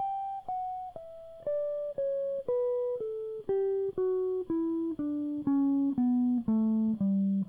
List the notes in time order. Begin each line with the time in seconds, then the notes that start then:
0.00 G5
0.49 F#5
0.96 E5
1.47 D5
1.98 C#5
2.49 B4
3.02 A4
3.49 G4
3.98 F#4
4.50 E4
4.99 D4
5.48 C#4
5.98 B3
6.49 A3
7.01 G3